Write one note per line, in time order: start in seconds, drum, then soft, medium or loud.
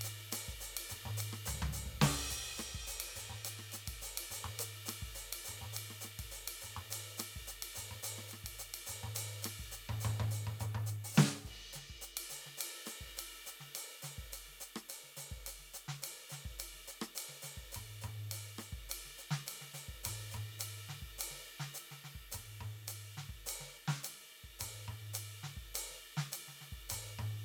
0.01 hi-hat pedal medium
0.01 ride loud
0.09 kick soft
0.32 cross-stick medium
0.32 hi-hat pedal medium
0.32 ride loud
0.48 kick soft
0.60 hi-hat pedal medium
0.77 ride loud
0.89 hi-hat pedal medium
0.89 high tom medium
1.05 high tom medium
1.17 hi-hat pedal loud
1.17 ride loud
1.33 cross-stick medium
1.45 floor tom medium
1.45 hi-hat pedal loud
1.62 floor tom loud
1.72 hi-hat pedal medium
1.85 kick soft
2.01 snare loud
2.01 hi-hat pedal soft
2.01 crash medium
2.30 kick soft
2.30 hi-hat pedal medium
2.30 ride medium
2.57 cross-stick medium
2.57 hi-hat pedal medium
2.74 kick medium
2.87 hi-hat pedal medium
3.00 ride loud
3.16 hi-hat pedal medium
3.16 high tom soft
3.29 high tom medium
3.45 hi-hat pedal medium
3.45 ride loud
3.59 cross-stick soft
3.72 cross-stick soft
3.72 hi-hat pedal medium
3.72 ride medium
3.87 kick soft
3.87 ride medium
4.02 hi-hat pedal medium
4.17 ride loud
4.30 hi-hat pedal medium
4.30 high tom soft
4.44 high tom medium
4.59 hi-hat pedal loud
4.59 ride loud
4.85 cross-stick medium
4.85 hi-hat pedal medium
4.85 ride loud
5.02 kick soft
5.15 hi-hat pedal medium
5.32 ride loud
5.44 hi-hat pedal medium
5.44 high tom soft
5.61 high tom medium
5.73 hi-hat pedal medium
5.73 ride loud
5.90 cross-stick soft
6.01 cross-stick soft
6.01 hi-hat pedal medium
6.06 ride soft
6.19 kick soft
6.19 ride medium
6.31 hi-hat pedal medium
6.47 ride loud
6.61 hi-hat pedal medium
6.61 high tom soft
6.76 high tom medium
6.90 hi-hat pedal medium
6.90 ride loud
7.17 cross-stick medium
7.17 hi-hat pedal medium
7.17 ride loud
7.36 kick soft
7.47 hi-hat pedal medium
7.62 ride loud
7.75 hi-hat pedal medium
7.75 high tom soft
7.91 high tom medium
8.03 hi-hat pedal loud
8.03 ride medium
8.18 cross-stick soft
8.28 hi-hat pedal medium
8.28 ride medium
8.33 cross-stick soft
8.44 kick soft
8.44 ride medium
8.59 hi-hat pedal medium
8.74 ride loud
8.86 hi-hat pedal medium
8.86 high tom soft
9.03 high tom medium
9.15 hi-hat pedal loud
9.15 ride loud
9.42 cross-stick medium
9.42 hi-hat pedal medium
9.42 ride loud
9.59 kick soft
9.71 hi-hat pedal medium
9.89 high tom medium
10.00 hi-hat pedal medium
10.04 high tom medium
10.20 high tom medium
10.31 hi-hat pedal medium
10.47 high tom medium
10.60 hi-hat pedal medium
10.60 high tom medium
10.74 high tom medium
10.86 hi-hat pedal medium
11.04 open hi-hat medium
11.14 snare loud
11.14 hi-hat pedal medium
11.44 kick soft
11.44 ride medium
11.73 snare soft
11.73 hi-hat pedal medium
11.89 kick soft
12.01 hi-hat pedal medium
12.17 ride loud
12.29 snare soft
12.29 hi-hat pedal medium
12.46 snare soft
12.57 hi-hat pedal medium
12.57 ride loud
12.86 cross-stick soft
12.86 hi-hat pedal medium
13.00 kick soft
13.00 snare soft
13.17 hi-hat pedal medium
13.17 ride loud
13.46 hi-hat pedal medium
13.60 snare soft
13.75 hi-hat pedal medium
13.75 ride loud
14.02 snare soft
14.02 hi-hat pedal medium
14.18 kick soft
14.32 hi-hat pedal medium
14.32 ride medium
14.48 snare soft
14.60 hi-hat pedal medium
14.76 cross-stick medium
14.89 hi-hat pedal medium
14.89 ride medium
15.03 snare soft
15.17 snare soft
15.17 hi-hat pedal medium
15.31 kick soft
15.46 hi-hat pedal medium
15.46 ride medium
15.59 snare soft
15.73 hi-hat pedal medium
15.88 snare medium
16.02 hi-hat pedal medium
16.02 ride loud
16.29 snare soft
16.29 hi-hat pedal medium
16.45 kick soft
16.59 hi-hat pedal medium
16.59 ride loud
16.73 snare soft
16.87 hi-hat pedal medium
17.01 cross-stick medium
17.15 hi-hat pedal medium
17.15 ride loud
17.28 snare soft
17.42 snare soft
17.42 hi-hat pedal medium
17.57 kick soft
17.72 hi-hat pedal medium
17.72 ride medium
17.76 high tom medium
18.01 hi-hat pedal medium
18.01 high tom medium
18.31 hi-hat pedal medium
18.31 ride loud
18.58 cross-stick medium
18.58 hi-hat pedal soft
18.72 kick soft
18.89 hi-hat pedal medium
18.89 ride loud
19.05 snare soft
19.18 hi-hat pedal medium
19.30 snare medium
19.46 hi-hat pedal medium
19.46 ride loud
19.61 snare soft
19.73 snare soft
19.73 hi-hat pedal medium
19.88 kick soft
20.03 hi-hat pedal medium
20.03 high tom medium
20.03 ride loud
20.31 hi-hat pedal medium
20.31 high tom medium
20.59 hi-hat pedal medium
20.59 ride loud
20.89 snare soft
21.02 kick soft
21.18 hi-hat pedal medium
21.18 ride loud
21.30 snare soft
21.60 snare medium
21.74 hi-hat pedal medium
21.74 ride medium
21.91 snare soft
22.04 snare soft
22.15 kick soft
22.31 hi-hat pedal medium
22.31 high tom medium
22.31 ride medium
22.60 high tom medium
22.87 hi-hat pedal medium
22.87 ride loud
23.17 snare soft
23.29 kick soft
23.46 hi-hat pedal loud
23.46 ride medium
23.60 snare soft
23.87 snare medium
24.03 hi-hat pedal medium
24.03 ride loud
24.43 kick soft
24.59 hi-hat pedal medium
24.59 high tom medium
24.59 ride loud
24.88 high tom medium
25.13 hi-hat pedal medium
25.13 ride loud
25.43 snare soft
25.56 kick soft
25.74 hi-hat pedal loud
25.74 ride loud
25.90 snare soft
26.17 snare medium
26.32 hi-hat pedal medium
26.32 ride loud
26.48 snare soft
26.61 snare soft
26.72 kick soft
26.89 hi-hat pedal medium
26.89 high tom medium
26.89 ride loud
27.18 high tom medium